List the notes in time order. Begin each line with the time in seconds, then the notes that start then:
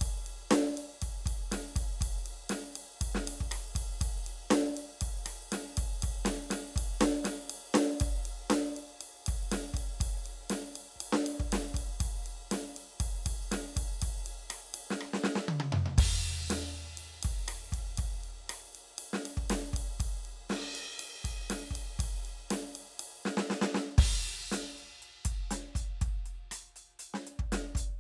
0.01 kick, ride
0.26 ride
0.51 snare, ride
0.77 ride
1.02 kick, ride
1.26 kick, ride
1.52 snare, ride
1.76 kick, ride
2.01 kick, ride
2.26 ride
2.49 snare, ride
2.76 ride
3.01 kick, ride
3.15 snare
3.27 ride
3.40 kick
3.51 cross-stick, ride
3.75 kick, ride
4.01 kick, ride
4.26 ride
4.51 snare, ride
4.77 ride
5.01 kick, ride
5.26 cross-stick, ride
5.52 snare, ride
5.77 kick, ride
6.02 kick, ride
6.25 snare, ride
6.50 snare, ride
6.76 kick, ride
7.01 snare, ride
7.25 snare, ride
7.50 ride
7.74 snare, ride
8.00 kick, ride
8.25 ride
8.50 snare, ride
8.77 ride
9.01 ride
9.26 kick, ride
9.52 snare, ride
9.73 kick, ride
10.00 kick, ride
10.26 ride
10.50 snare, ride
10.76 ride
10.96 kick
11.01 ride
11.13 snare
11.26 ride
11.40 kick
11.52 snare, ride
11.74 kick, ride
12.00 kick, ride
12.05 kick
12.26 ride
12.51 snare, ride
12.77 ride
13.00 kick, ride
13.26 kick, ride
13.52 snare, ride
13.76 kick, ride
14.02 kick, ride
14.26 ride
14.50 cross-stick, ride
14.74 ride
14.91 snare
15.01 cross-stick
15.14 snare
15.24 snare
15.36 snare
15.48 high tom
15.60 high tom
15.72 mid tom
15.86 mid tom
15.98 kick, ride, crash
16.24 ride
16.50 snare, ride
16.75 ride
16.97 ride
17.23 kick, ride
17.48 cross-stick, ride
17.72 kick, ride
17.98 kick, ride
18.24 ride
18.49 cross-stick, ride
18.75 ride
18.98 ride
19.13 snare
19.26 ride
19.37 kick
19.50 snare, ride
19.73 kick, ride
20.00 kick, ride
20.25 ride
20.50 snare, ride
20.75 ride
20.99 ride
21.24 kick, ride
21.50 snare, ride
21.71 kick
21.75 ride
21.99 kick, ride
22.03 kick
22.25 ride
22.51 snare, ride
22.75 ride
22.99 ride
23.25 snare
23.37 snare
23.50 snare
23.62 snare
23.74 snare
23.98 kick, crash
24.26 open hi-hat
24.52 open hi-hat, snare
24.77 open hi-hat
25.02 closed hi-hat
25.25 kick, closed hi-hat
25.51 closed hi-hat, snare
25.75 closed hi-hat, kick
26.01 kick, closed hi-hat
26.26 open hi-hat
26.51 open hi-hat, cross-stick
26.76 open hi-hat
26.99 open hi-hat
27.14 snare
27.27 open hi-hat
27.39 kick
27.52 closed hi-hat, snare
27.60 open hi-hat
27.75 closed hi-hat, kick